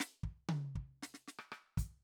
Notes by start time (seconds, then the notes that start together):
0.00 snare
0.23 kick
0.49 high tom
0.75 kick
1.02 snare
1.14 snare
1.28 snare
1.39 cross-stick
1.52 cross-stick
1.77 open hi-hat, kick